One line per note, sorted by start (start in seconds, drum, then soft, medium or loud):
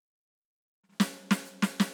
0.84 snare soft
0.89 snare soft
0.92 snare soft
0.94 snare soft
1.00 snare loud
1.31 snare loud
1.45 hi-hat pedal medium
1.62 snare loud
1.80 snare loud